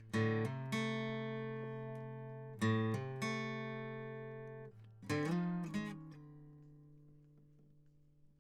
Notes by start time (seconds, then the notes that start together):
0.15 A2
0.47 C3 A3
0.73 A3
2.63 A2
2.96 C3
3.23 A3
5.11 D3 C4
5.27 F3 D#4
5.66 D#3 C#4
5.75 G#3
6.14 D3 C4